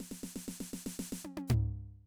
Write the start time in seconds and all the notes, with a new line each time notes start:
0.00 snare
0.11 snare
0.23 snare
0.36 snare
0.48 snare
0.60 snare
0.73 snare
0.86 snare
0.99 snare
1.12 snare
1.25 high tom
1.37 closed hi-hat, high tom
1.48 floor tom, hi-hat pedal